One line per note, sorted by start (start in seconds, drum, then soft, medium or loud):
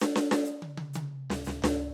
0.00 snare loud
0.00 hi-hat pedal medium
0.16 snare loud
0.16 hi-hat pedal soft
0.31 snare loud
0.45 hi-hat pedal medium
0.62 high tom medium
0.77 high tom medium
0.93 hi-hat pedal medium
0.93 high tom loud
1.30 snare loud
1.30 floor tom medium
1.44 snare medium
1.44 floor tom medium
1.44 hi-hat pedal medium
1.62 snare loud
1.62 floor tom medium